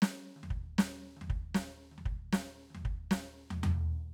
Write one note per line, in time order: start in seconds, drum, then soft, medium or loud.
0.02 snare loud
0.36 high tom soft
0.43 floor tom medium
0.50 kick soft
0.78 snare loud
1.16 high tom soft
1.21 floor tom medium
1.30 kick medium
1.55 snare loud
1.91 high tom soft
1.98 floor tom soft
2.05 kick medium
2.33 snare loud
2.70 high tom soft
2.75 floor tom medium
2.85 kick medium
3.11 snare loud
3.50 floor tom medium
3.63 floor tom loud